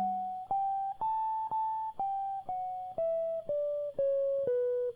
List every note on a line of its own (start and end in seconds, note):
0.00 0.47 F#5
0.51 0.95 G5
1.02 1.51 A5
1.52 1.93 A5
2.00 2.42 G5
2.49 2.94 F#5
2.98 3.42 E5
3.49 3.93 D5
3.99 4.49 C#5
4.47 4.93 B4